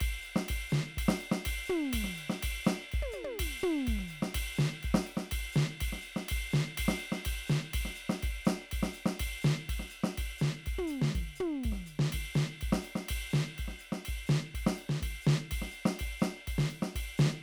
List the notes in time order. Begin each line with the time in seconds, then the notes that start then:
0.01 kick, ride bell
0.08 kick
0.22 hi-hat pedal, ride
0.36 snare
0.49 kick, ride
0.57 kick
0.70 snare, hi-hat pedal
0.98 kick, ride
1.09 snare
1.18 hi-hat pedal, ride
1.32 snare
1.46 kick, ride
1.53 kick
1.66 hi-hat pedal, floor tom
1.93 kick, ride
2.00 kick
2.05 snare
2.16 hi-hat pedal, ride
2.30 snare
2.43 kick, ride
2.50 kick
2.65 snare, hi-hat pedal
2.92 kick, ride
3.01 kick, high tom
3.12 hi-hat pedal, high tom
3.25 closed hi-hat, high tom
3.40 kick, ride
3.46 kick
3.60 floor tom, hi-hat pedal
3.87 kick, ride bell
3.95 kick
3.99 snare
4.08 hi-hat pedal, ride
4.23 snare
4.35 kick, ride
4.56 snare, hi-hat pedal
4.83 kick, ride bell
4.95 snare
5.03 hi-hat pedal, ride
5.18 snare
5.32 kick, ride bell
5.39 kick
5.53 snare, hi-hat pedal
5.81 kick, ride bell
5.88 kick
5.93 snare
6.02 hi-hat pedal
6.06 ride
6.17 snare
6.29 kick, ride bell
6.51 snare, hi-hat pedal
6.78 kick, ride
6.85 kick, snare
6.99 hi-hat pedal, ride
7.13 snare
7.26 kick, ride bell
7.33 kick
7.48 snare, hi-hat pedal
7.74 kick, ride bell
7.81 kick
7.86 snare
7.96 hi-hat pedal, ride
8.10 snare
8.19 hi-hat pedal, ride bell
8.24 kick
8.30 kick
8.46 snare, hi-hat pedal
8.68 hi-hat pedal, ride bell
8.73 kick
8.83 snare
8.94 hi-hat pedal, ride
9.06 snare
9.20 kick, ride bell
9.27 kick
9.42 snare, hi-hat pedal
9.70 kick, ride bell
9.75 kick
9.80 snare
9.91 hi-hat pedal, ride
10.04 snare
10.12 hi-hat pedal
10.18 kick, ride bell
10.39 snare, hi-hat pedal
10.66 kick, ride bell
10.73 kick
10.78 floor tom
10.88 hi-hat pedal, ride bell
11.02 snare
11.15 kick, ride bell
11.22 kick
11.36 hi-hat pedal
11.40 floor tom
11.64 kick, ride bell
11.72 kick, snare
11.81 snare
11.87 hi-hat pedal, ride
12.00 snare
12.13 kick, ride bell
12.35 snare, hi-hat pedal
12.61 kick, ride bell
12.69 kick
12.73 snare
12.82 hi-hat pedal, ride
12.96 snare
13.09 kick, ride bell
13.31 snare, hi-hat pedal
13.58 kick, ride
13.65 kick, snare
13.79 hi-hat pedal, ride
13.93 snare
14.06 kick, ride bell
14.27 snare, hi-hat pedal
14.55 kick, ride bell
14.60 kick
14.67 snare
14.75 hi-hat pedal, ride
14.90 snare
15.03 kick, ride bell
15.09 kick
15.23 hi-hat pedal
15.27 snare
15.51 kick, ride bell
15.58 kick
15.62 snare
15.71 hi-hat pedal, ride
15.86 snare
15.99 kick, ride bell
16.07 kick
16.20 snare, hi-hat pedal
16.48 kick, ride bell
16.54 kick
16.59 snare
16.68 hi-hat pedal, ride
16.83 snare
16.96 kick, ride bell
17.18 snare, hi-hat pedal
17.27 snare